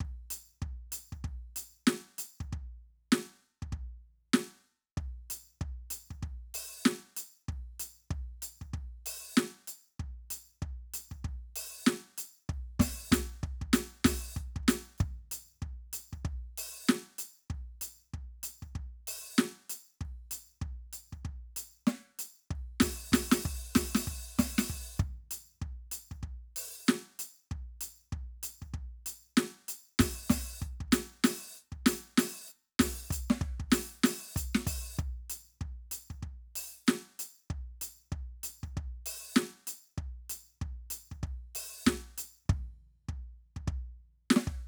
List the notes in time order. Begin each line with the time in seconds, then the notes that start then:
0.01 kick
0.06 crash
0.31 percussion
0.62 kick
0.93 percussion
1.13 kick
1.25 kick, crash
1.57 percussion
1.88 snare, percussion
2.19 percussion
2.41 kick
2.53 kick
3.13 snare
3.63 kick
3.73 kick
4.34 snare
4.98 kick, crash
5.31 percussion
5.62 kick
5.91 percussion
6.11 kick
6.23 kick, crash
6.55 percussion
6.86 snare, percussion
7.17 percussion
7.49 kick, crash
7.80 percussion
8.11 kick, crash
8.43 percussion
8.62 kick
8.74 kick, crash
9.07 percussion
9.38 snare, percussion
9.68 percussion
10.00 kick
10.31 percussion
10.63 kick
10.94 percussion
11.12 kick
11.25 kick
11.29 crash
11.56 percussion
11.87 snare, percussion
12.18 percussion
12.50 kick, crash
12.55 ride
12.80 kick, snare, percussion
13.11 kick, snare, percussion
13.14 percussion
13.44 kick
13.62 kick
13.74 snare, percussion
14.05 kick, snare, percussion
14.36 kick, percussion
14.57 kick
14.64 kick
14.68 snare, percussion
14.99 kick, percussion
15.32 percussion
15.63 kick
15.94 percussion
16.13 kick
16.26 kick, crash
16.58 percussion
16.88 snare, percussion
17.19 percussion
17.51 kick
17.56 crash
17.82 percussion
18.14 kick
18.44 percussion
18.63 kick
18.76 kick
19.08 percussion
19.38 snare, percussion
19.70 percussion
20.02 kick
20.06 crash
20.32 percussion
20.62 kick
20.93 percussion
21.13 kick
21.26 kick
21.57 percussion
21.88 snare, percussion
22.20 percussion
22.51 kick
22.56 crash
22.81 kick, snare, percussion
23.13 kick, snare, percussion
23.32 snare, percussion
23.46 kick
23.76 kick, snare, percussion
23.96 snare, percussion
24.08 kick
24.39 kick, snare, percussion
24.59 snare, percussion
24.70 kick
24.98 kick, percussion
25.32 percussion
25.62 kick
25.92 percussion
26.12 kick
26.24 kick
26.57 percussion
26.88 snare, percussion
27.20 percussion
27.52 kick
27.82 percussion
28.13 kick
28.44 percussion
28.62 kick
28.74 kick
29.07 percussion
29.38 snare, percussion
29.69 percussion
30.00 kick, snare, percussion
30.30 kick, snare, percussion
30.61 kick, percussion
30.81 kick
30.89 kick, percussion
30.93 snare, percussion
31.25 snare, percussion
31.56 percussion
31.73 kick
31.87 snare, percussion
32.18 snare, percussion
32.49 percussion
32.80 kick, snare, percussion
33.10 kick, percussion
33.13 percussion
33.31 snare
33.42 kick
33.60 kick
33.69 kick, snare, percussion
33.73 percussion
34.04 snare, percussion
34.35 kick, percussion
34.38 percussion
34.55 snare
34.67 kick, percussion
34.98 kick, percussion
35.30 percussion
35.62 kick
35.92 percussion
36.11 kick
36.23 kick
36.56 percussion
36.88 snare, percussion
37.20 percussion
37.51 kick
37.82 percussion
38.13 kick
38.44 percussion
38.64 kick
38.78 kick
39.07 percussion
39.36 snare, percussion
39.68 percussion
39.98 kick
40.30 percussion
40.62 kick
40.91 percussion
41.12 kick
41.24 kick
41.28 crash
41.56 percussion
41.86 kick, snare, percussion
42.18 percussion
42.46 kick
42.50 kick
42.54 crash
43.09 kick
43.57 kick
43.68 kick
44.31 snare
44.37 snare
44.48 kick